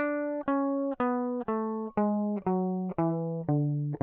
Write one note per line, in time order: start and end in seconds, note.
0.00 0.44 D4
0.49 0.96 C#4
1.01 1.46 B3
1.49 1.91 A3
1.98 2.42 G#3
2.48 2.95 F#3
3.00 3.47 E3
3.50 3.98 D3